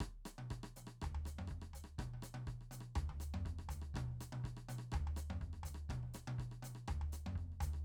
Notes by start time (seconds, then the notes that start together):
0.01 kick, cross-stick
0.25 cross-stick, hi-hat pedal
0.38 high tom
0.50 kick, cross-stick
0.63 cross-stick
0.76 hi-hat pedal, high tom
0.87 cross-stick
1.02 kick, cross-stick, floor tom
1.15 floor tom
1.25 cross-stick, hi-hat pedal
1.38 mid tom
1.47 kick, cross-stick
1.61 cross-stick
1.73 floor tom, hi-hat pedal
1.84 cross-stick
1.98 kick, cross-stick, high tom
2.14 high tom
2.17 high tom
2.22 cross-stick, hi-hat pedal
2.34 high tom
2.47 kick, cross-stick
2.61 cross-stick
2.71 hi-hat pedal, high tom
2.80 cross-stick
2.95 kick, cross-stick, floor tom
3.09 floor tom
3.20 cross-stick, hi-hat pedal
3.34 mid tom
3.45 kick, cross-stick
3.59 cross-stick
3.69 floor tom, hi-hat pedal
3.82 cross-stick
3.94 kick, cross-stick, high tom
4.08 high tom
4.11 high tom
4.16 high tom
4.20 cross-stick, hi-hat pedal
4.32 high tom
4.44 kick, cross-stick
4.57 cross-stick
4.68 hi-hat pedal, high tom
4.78 cross-stick
4.92 kick, cross-stick, floor tom
5.07 floor tom
5.16 cross-stick, hi-hat pedal
5.30 mid tom
5.41 kick, cross-stick
5.53 cross-stick
5.63 floor tom, hi-hat pedal
5.74 cross-stick
5.89 kick, cross-stick, high tom
6.03 high tom
6.06 high tom
6.14 cross-stick, hi-hat pedal
6.27 high tom
6.38 kick, cross-stick
6.51 cross-stick
6.62 hi-hat pedal, high tom
6.75 cross-stick
6.88 kick, cross-stick, floor tom
7.01 floor tom
7.12 cross-stick, hi-hat pedal
7.26 mid tom
7.35 kick, cross-stick
7.52 cross-stick
7.60 floor tom, hi-hat pedal
7.73 cross-stick